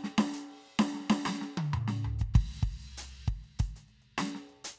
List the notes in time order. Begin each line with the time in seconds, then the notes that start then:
0.05 snare
0.19 snare
0.34 closed hi-hat
0.50 crash
0.80 snare
0.95 snare
1.01 snare
1.05 snare
1.11 snare
1.26 snare
1.42 snare
1.58 high tom
1.74 mid tom
1.89 snare
2.05 floor tom
2.20 closed hi-hat, kick
2.35 kick, crash
2.64 closed hi-hat, kick
2.83 closed hi-hat
2.98 closed hi-hat
3.15 closed hi-hat
3.29 kick, closed hi-hat
3.45 closed hi-hat
3.60 closed hi-hat, kick
3.77 closed hi-hat
3.89 closed hi-hat
4.03 closed hi-hat
4.19 closed hi-hat, snare
4.36 snare
4.50 closed hi-hat
4.65 closed hi-hat